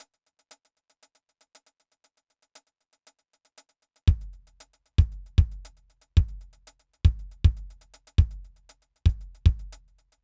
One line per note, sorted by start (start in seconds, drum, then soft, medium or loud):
0.01 closed hi-hat loud
0.14 closed hi-hat soft
0.26 closed hi-hat soft
0.39 closed hi-hat soft
0.51 closed hi-hat loud
0.65 closed hi-hat soft
0.77 closed hi-hat soft
0.90 closed hi-hat medium
1.03 closed hi-hat medium
1.15 closed hi-hat medium
1.29 closed hi-hat soft
1.41 closed hi-hat medium
1.55 closed hi-hat loud
1.67 closed hi-hat medium
1.80 closed hi-hat soft
1.92 closed hi-hat soft
2.04 closed hi-hat medium
2.17 closed hi-hat soft
2.30 closed hi-hat soft
2.42 closed hi-hat soft
2.55 closed hi-hat loud
2.67 closed hi-hat soft
2.81 closed hi-hat soft
2.93 closed hi-hat soft
3.07 closed hi-hat medium
3.19 closed hi-hat soft
3.33 closed hi-hat soft
3.45 closed hi-hat medium
3.58 closed hi-hat loud
3.69 closed hi-hat soft
3.82 closed hi-hat soft
3.96 closed hi-hat medium
4.08 kick loud
4.08 closed hi-hat soft
4.21 closed hi-hat soft
4.33 closed hi-hat soft
4.47 closed hi-hat medium
4.60 closed hi-hat loud
4.73 closed hi-hat medium
4.86 closed hi-hat soft
4.98 kick loud
4.98 closed hi-hat medium
5.12 closed hi-hat soft
5.26 closed hi-hat soft
5.38 kick loud
5.38 closed hi-hat soft
5.51 closed hi-hat soft
5.65 closed hi-hat loud
5.77 closed hi-hat soft
5.90 closed hi-hat soft
6.01 closed hi-hat medium
6.17 kick loud
6.17 closed hi-hat soft
6.28 closed hi-hat soft
6.41 closed hi-hat soft
6.53 closed hi-hat medium
6.67 closed hi-hat loud
6.79 closed hi-hat soft
6.93 closed hi-hat soft
7.05 kick loud
7.05 closed hi-hat medium
7.19 closed hi-hat soft
7.31 closed hi-hat medium
7.45 kick loud
7.45 closed hi-hat soft
7.57 closed hi-hat medium
7.70 closed hi-hat medium
7.81 closed hi-hat medium
7.94 closed hi-hat loud
8.07 closed hi-hat medium
8.18 kick loud
8.18 closed hi-hat soft
8.31 closed hi-hat medium
8.45 closed hi-hat soft
8.56 closed hi-hat soft
8.69 closed hi-hat loud
8.82 closed hi-hat soft
8.96 closed hi-hat soft
9.06 closed hi-hat medium
9.06 kick loud
9.21 closed hi-hat soft
9.35 closed hi-hat medium
9.46 kick loud
9.46 closed hi-hat soft
9.59 closed hi-hat soft
9.73 closed hi-hat loud
9.88 closed hi-hat soft
9.99 closed hi-hat soft
10.12 closed hi-hat soft